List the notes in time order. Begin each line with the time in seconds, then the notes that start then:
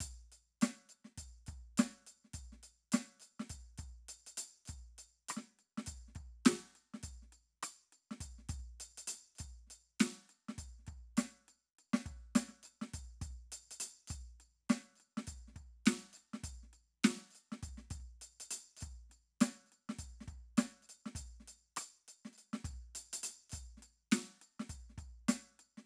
0.00 kick, percussion
0.32 percussion
0.62 snare, percussion
0.89 percussion
1.05 snare
1.18 kick, percussion
1.47 kick, percussion
1.78 snare, percussion
1.90 snare
2.07 percussion
2.25 snare
2.34 kick, percussion
2.52 snare
2.63 percussion
2.92 snare, percussion
3.20 percussion
3.22 percussion
3.40 snare
3.50 kick, percussion
3.78 kick, percussion
4.09 percussion
4.27 percussion
4.38 percussion
4.66 percussion
4.68 kick, percussion
4.98 percussion
5.29 cross-stick, percussion
5.37 snare
5.59 percussion
5.78 snare
5.87 kick, percussion
6.08 snare
6.15 kick, percussion
6.45 snare, percussion
6.75 percussion
6.94 snare
7.03 kick, percussion
7.22 snare
7.33 percussion
7.63 cross-stick, percussion
7.93 percussion
8.11 snare
8.21 kick, percussion
8.38 snare
8.49 kick, percussion
8.60 kick
8.80 percussion
8.98 percussion
9.08 percussion
9.36 percussion
9.39 kick, percussion
9.67 snare, percussion
10.00 snare, percussion
10.30 percussion
10.49 snare
10.58 kick, percussion
10.79 snare
10.83 snare, percussion
10.88 kick
11.17 snare, percussion
11.48 percussion
11.79 percussion
11.94 snare
12.06 kick, percussion
12.11 kick
12.35 snare, percussion
12.49 snare
12.63 percussion
12.66 percussion
12.82 snare
12.94 kick, percussion
13.22 kick, percussion
13.31 kick
13.52 percussion
13.71 percussion
13.80 percussion
14.08 kick, percussion
14.11 percussion
14.40 percussion
14.70 snare, percussion
14.96 percussion
15.00 percussion
15.17 snare
15.27 kick, percussion
15.48 snare
15.53 kick, snare, percussion
15.86 snare, percussion
16.13 percussion
16.17 percussion
16.34 snare
16.44 kick, percussion
16.63 snare
16.73 percussion
17.04 snare, percussion
17.17 snare
17.31 percussion
17.35 percussion
17.52 snare
17.63 kick, percussion
17.69 kick
17.78 snare
17.91 kick, percussion
17.97 kick
18.00 kick
18.22 percussion
18.40 percussion
18.51 percussion
18.77 percussion
18.81 kick, percussion
19.10 snare, percussion
19.41 snare, percussion
19.67 percussion
19.72 percussion
19.89 snare
19.99 kick, percussion
20.21 snare
20.28 kick, percussion
20.58 snare, percussion
20.83 percussion
20.89 percussion
21.06 snare
21.15 kick, percussion
21.21 kick
21.40 snare
21.45 snare, percussion
21.49 snare
21.77 cross-stick, percussion
21.81 percussion
22.08 percussion
22.25 snare
22.33 percussion
22.38 percussion
22.53 snare
22.65 kick, percussion
22.71 kick
22.74 kick
22.95 percussion
23.13 percussion
23.24 percussion
23.50 percussion
23.52 kick, percussion
23.55 percussion
23.77 snare
23.83 percussion
24.12 snare, percussion
24.42 percussion
24.60 snare
24.70 kick, percussion
24.90 snare
24.98 kick, percussion
25.29 snare, percussion
25.60 percussion
25.78 snare